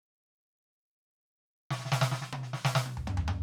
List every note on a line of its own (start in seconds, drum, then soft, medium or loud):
1.71 snare loud
1.79 snare medium
1.85 snare medium
1.92 snare loud
2.01 snare loud
2.11 snare loud
2.33 high tom loud
2.43 snare soft
2.53 snare medium
2.65 snare loud
2.75 snare loud
2.86 high tom loud
2.97 floor tom loud
3.07 mid tom loud
3.17 floor tom loud
3.28 mid tom loud